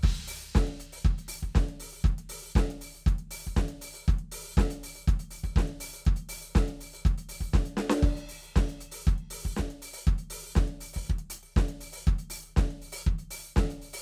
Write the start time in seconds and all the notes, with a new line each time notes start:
0.01 kick, hi-hat pedal, crash
0.15 closed hi-hat
0.28 open hi-hat
0.43 open hi-hat
0.51 hi-hat pedal
0.56 kick, snare
0.68 closed hi-hat
0.81 open hi-hat
0.93 open hi-hat
1.01 hi-hat pedal
1.06 kick, closed hi-hat
1.19 closed hi-hat
1.29 open hi-hat
1.43 kick, open hi-hat
1.53 kick, snare, hi-hat pedal
1.69 closed hi-hat
1.81 open hi-hat
1.94 open hi-hat
2.02 kick, hi-hat pedal
2.08 closed hi-hat
2.19 closed hi-hat
2.30 open hi-hat
2.44 open hi-hat
2.52 kick, hi-hat pedal
2.57 snare
2.71 closed hi-hat
2.82 open hi-hat
2.96 open hi-hat
3.03 hi-hat pedal
3.07 kick, closed hi-hat
3.19 closed hi-hat
3.32 open hi-hat
3.42 open hi-hat
3.48 kick
3.57 kick, snare, hi-hat pedal
3.69 closed hi-hat
3.82 open hi-hat
3.94 open hi-hat
4.05 closed hi-hat, kick, hi-hat pedal
4.19 closed hi-hat
4.32 open hi-hat
4.43 open hi-hat
4.56 kick, snare, hi-hat pedal
4.71 closed hi-hat
4.84 open hi-hat
4.96 open hi-hat
5.04 hi-hat pedal
5.08 kick, closed hi-hat
5.20 closed hi-hat
5.31 open hi-hat
5.44 open hi-hat, kick
5.57 kick, snare, hi-hat pedal
5.68 closed hi-hat
5.81 open hi-hat
5.94 open hi-hat
6.02 closed hi-hat, hi-hat pedal
6.07 kick
6.17 closed hi-hat
6.30 open hi-hat
6.42 open hi-hat
6.53 kick, snare, hi-hat pedal
6.69 closed hi-hat
6.81 open hi-hat
6.94 open hi-hat
7.02 hi-hat pedal
7.06 kick, closed hi-hat
7.19 closed hi-hat
7.30 open hi-hat
7.41 open hi-hat, kick
7.53 kick, snare, hi-hat pedal
7.66 closed hi-hat
7.78 snare
7.91 snare
7.99 hi-hat pedal
8.03 kick, crash
8.17 closed hi-hat
8.30 open hi-hat
8.43 open hi-hat
8.53 kick, snare, hi-hat pedal
8.69 closed hi-hat
8.81 closed hi-hat
8.93 open hi-hat
9.04 kick, hi-hat pedal
9.09 closed hi-hat
9.19 closed hi-hat
9.31 open hi-hat
9.44 kick, open hi-hat
9.57 kick, snare, hi-hat pedal
9.71 closed hi-hat
9.83 open hi-hat
9.94 open hi-hat
10.03 hi-hat pedal
10.08 kick, closed hi-hat
10.19 closed hi-hat
10.31 open hi-hat
10.44 open hi-hat
10.54 kick, snare, hi-hat pedal
10.68 closed hi-hat
10.81 open hi-hat
10.94 open hi-hat, kick
11.07 kick, hi-hat pedal, open hi-hat
11.19 closed hi-hat
11.31 open hi-hat
11.44 open hi-hat
11.56 kick, snare, hi-hat pedal
11.69 closed hi-hat
11.81 open hi-hat
11.93 open hi-hat
12.03 hi-hat pedal
12.08 kick, closed hi-hat
12.19 closed hi-hat
12.31 open hi-hat
12.44 open hi-hat
12.53 hi-hat pedal
12.57 kick, snare
12.71 closed hi-hat
12.82 open hi-hat
12.93 open hi-hat
13.01 hi-hat pedal
13.07 kick, closed hi-hat
13.19 closed hi-hat
13.31 open hi-hat
13.45 open hi-hat
13.53 hi-hat pedal
13.57 kick, snare
13.71 closed hi-hat
13.78 kick
13.82 open hi-hat
13.94 open hi-hat